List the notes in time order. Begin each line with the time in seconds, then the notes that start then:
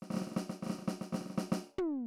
0.00 snare, hi-hat pedal
0.10 snare
0.14 snare
0.16 snare
0.21 snare
0.27 snare
0.31 snare
0.36 snare
0.49 snare, hi-hat pedal
0.62 snare
0.66 snare
0.70 snare
0.74 snare
0.78 snare
0.82 snare
0.88 snare
1.01 snare, hi-hat pedal
1.12 snare
1.14 snare
1.21 snare
1.26 snare
1.30 snare
1.34 snare
1.38 snare
1.52 snare, hi-hat pedal
1.78 floor tom